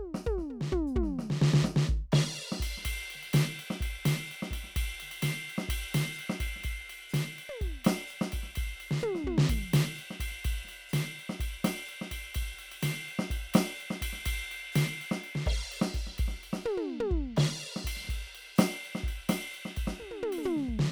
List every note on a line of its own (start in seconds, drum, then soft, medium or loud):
0.15 snare medium
0.24 kick soft
0.24 hi-hat pedal soft
0.24 mid tom loud
0.33 kick soft
0.39 snare soft
0.50 mid tom soft
0.62 snare medium
0.72 kick soft
0.72 floor tom loud
0.88 hi-hat pedal soft
0.96 kick soft
0.96 floor tom loud
1.03 kick soft
1.03 snare soft
1.19 snare soft
1.31 snare medium
1.42 snare loud
1.54 snare loud
1.62 kick soft
1.62 snare medium
1.77 snare loud
1.87 kick medium
1.87 hi-hat pedal soft
1.96 kick soft
2.13 snare loud
2.13 crash loud
2.52 snare medium
2.52 hi-hat pedal soft
2.60 kick soft
2.60 ride bell loud
2.68 kick soft
2.78 snare soft
2.83 kick soft
2.83 snare soft
2.83 ride bell loud
3.11 ride medium
3.16 snare soft
3.23 ride medium
3.34 snare loud
3.34 hi-hat pedal medium
3.34 ride bell loud
3.56 hi-hat pedal soft
3.56 ride medium
3.71 snare medium
3.81 kick soft
3.81 hi-hat pedal soft
3.81 ride medium
4.06 snare loud
4.06 ride bell loud
4.26 hi-hat pedal medium
4.32 ride medium
4.43 snare medium
4.51 kick soft
4.51 ride bell medium
4.64 snare soft
4.76 kick soft
4.76 hi-hat pedal soft
4.76 ride loud
4.83 kick soft
5.00 snare soft
5.00 ride medium
5.12 ride medium
5.21 snare medium
5.21 hi-hat pedal medium
5.21 ride bell loud
5.50 ride medium
5.59 snare medium
5.69 kick soft
5.69 hi-hat pedal soft
5.69 ride loud
5.75 kick soft
5.95 snare loud
5.95 ride bell loud
6.14 hi-hat pedal medium
6.20 ride medium
6.30 snare medium
6.41 kick soft
6.41 ride medium
6.48 kick soft
6.57 snare soft
6.60 snare soft
6.60 hi-hat pedal soft
6.60 ride medium
6.65 kick soft
6.90 ride medium
7.10 hi-hat pedal medium
7.14 snare medium
7.14 ride loud
7.39 ride medium
7.49 closed hi-hat soft
7.49 high tom medium
7.62 kick soft
7.62 ride medium
7.68 kick soft
7.85 snare loud
7.85 ride loud
8.08 hi-hat pedal medium
8.08 ride soft
8.22 snare medium
8.33 kick soft
8.33 ride medium
8.44 snare soft
8.51 snare soft
8.51 hi-hat pedal soft
8.56 kick soft
8.56 ride medium
8.64 kick soft
8.64 snare soft
8.81 ride medium
8.91 snare medium
9.00 hi-hat pedal medium
9.00 mid tom loud
9.15 snare soft
9.25 kick soft
9.25 floor tom loud
9.38 snare loud
9.49 kick soft
9.49 hi-hat pedal soft
9.49 ride loud
9.56 kick soft
9.74 snare loud
9.74 ride loud
9.95 hi-hat pedal medium
9.95 ride soft
10.11 snare soft
10.20 kick soft
10.20 ride loud
10.32 snare soft
10.45 kick soft
10.45 ride loud
10.53 kick soft
10.65 snare soft
10.65 ride medium
10.90 hi-hat pedal medium
10.94 snare medium
10.94 ride loud
11.20 ride soft
11.30 snare medium
11.40 kick soft
11.40 ride medium
11.49 kick soft
11.65 snare medium
11.65 ride loud
11.86 hi-hat pedal medium
11.86 ride medium
12.02 snare soft
12.12 kick soft
12.12 ride medium
12.35 kick soft
12.35 ride loud
12.43 kick soft
12.55 kick soft
12.59 ride medium
12.72 ride medium
12.81 snare medium
12.81 hi-hat pedal medium
12.81 ride bell loud
13.09 ride soft
13.19 snare medium
13.31 kick soft
13.31 ride medium
13.54 snare loud
13.54 ride bell loud
13.76 hi-hat pedal medium
13.81 ride soft
13.91 snare medium
14.02 kick soft
14.02 ride loud
14.13 snare soft
14.18 snare soft
14.22 snare soft
14.25 kick soft
14.25 snare soft
14.25 ride loud
14.35 kick soft
14.52 ride medium
14.73 snare loud
14.73 hi-hat pedal medium
14.73 ride loud
15.02 ride medium
15.12 snare medium
15.24 ride bell medium
15.36 snare medium
15.44 kick medium
15.44 hi-hat pedal soft
15.44 crash loud
15.52 kick soft
15.60 kick soft
15.72 ride bell medium
15.82 snare medium
15.95 kick soft
15.95 ride bell medium
16.07 snare soft
16.19 kick medium
16.19 ride medium
16.26 kick soft
16.26 snare soft
16.44 ride medium
16.54 snare medium
16.62 hi-hat pedal soft
16.62 mid tom loud
16.77 mid tom medium
17.00 mid tom loud
17.12 kick soft
17.18 kick soft
17.22 kick soft
17.33 kick soft
17.33 crash loud
17.38 snare loud
17.58 hi-hat pedal soft
17.77 snare medium
17.83 kick soft
17.83 hi-hat pedal soft
17.88 ride loud
17.97 snare soft
18.02 snare soft
18.05 snare soft
18.08 kick soft
18.08 snare soft
18.08 ride medium
18.15 kick soft
18.17 kick soft
18.35 ride medium
18.57 snare loud
18.57 hi-hat pedal medium
18.57 ride loud
18.69 snare soft
18.85 ride soft
18.96 snare medium
19.04 kick soft
19.04 hi-hat pedal soft
19.09 kick soft
19.09 ride medium
19.29 snare medium
19.29 ride bell loud
19.51 hi-hat pedal medium
19.51 ride medium
19.66 snare soft
19.77 kick soft
19.77 ride bell medium
19.86 kick soft
19.86 snare medium
20.00 kick soft
20.00 mid tom medium
20.11 mid tom medium
20.23 mid tom loud
20.33 ride medium
20.38 mid tom medium
20.44 hi-hat pedal medium
20.44 floor tom loud
20.57 snare soft
20.69 kick soft
20.80 snare loud